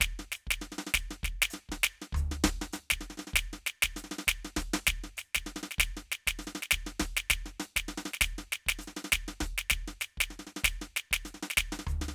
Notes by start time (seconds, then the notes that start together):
0.01 kick, snare
0.07 kick
0.10 kick
0.20 snare
0.32 snare, hi-hat pedal
0.47 kick, snare
0.62 snare
0.72 snare
0.79 snare
0.87 snare
0.94 kick, snare, hi-hat pedal
1.00 kick
1.11 snare
1.24 kick, snare
1.30 kick
1.33 kick
1.42 snare
1.51 snare, hi-hat pedal
1.69 kick, snare
1.84 snare
2.02 snare
2.13 kick, floor tom, hi-hat pedal
2.32 snare
2.44 kick, snare
2.51 kick
2.62 snare
2.73 snare, hi-hat pedal
2.91 kick, snare
3.01 snare
3.10 snare
3.18 snare
3.19 snare
3.28 snare
3.34 kick, snare, hi-hat pedal
3.53 snare
3.67 snare
3.83 kick, snare
3.97 snare, hi-hat pedal
4.04 snare
4.12 snare
4.19 snare
4.28 kick, snare
4.45 snare
4.57 kick, snare, hi-hat pedal
4.74 snare
4.87 kick, snare
4.94 kick
5.04 snare
5.18 snare, hi-hat pedal
5.35 kick, snare
5.47 snare
5.56 snare
5.63 snare
5.71 snare
5.79 kick, snare, hi-hat pedal
5.85 kick
5.97 snare
6.12 snare
6.27 kick, snare
6.39 snare, hi-hat pedal
6.47 snare
6.55 snare
6.63 snare
6.71 kick, snare
6.87 snare
7.00 kick, snare, hi-hat pedal
7.17 snare
7.31 kick, snare
7.46 snare
7.60 snare, hi-hat pedal
7.77 kick, snare
7.89 snare
7.98 snare
8.06 snare
8.14 snare
8.22 kick, snare, hi-hat pedal
8.28 kick
8.39 snare
8.53 snare
8.67 kick, snare
8.79 snare, hi-hat pedal
8.88 snare
8.97 snare
9.05 snare
9.13 kick, snare
9.28 snare
9.41 kick, snare, hi-hat pedal
9.50 kick
9.58 snare
9.70 kick, snare
9.88 snare
10.01 snare, hi-hat pedal
10.18 kick, snare
10.31 snare
10.40 snare
10.47 snare
10.57 snare
10.64 kick, snare, hi-hat pedal
10.70 kick
10.82 snare
10.97 snare
11.12 kick, snare
11.26 snare, hi-hat pedal
11.35 snare
11.43 snare
11.51 snare
11.58 kick, snare
11.73 snare
11.79 snare
11.87 kick, floor tom, hi-hat pedal
11.96 kick
12.02 snare
12.09 snare